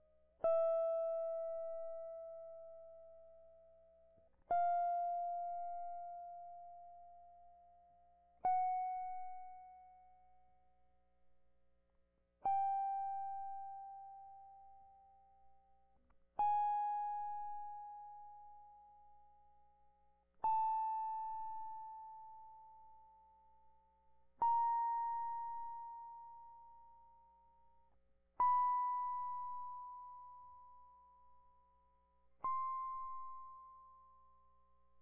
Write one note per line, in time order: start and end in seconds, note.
0.45 4.10 E5
4.51 7.87 F5
8.45 10.81 F#5
12.46 15.42 G5
16.40 19.39 G#5
20.45 23.53 A5
24.42 27.60 A#5
28.40 31.67 B5
32.45 34.81 C6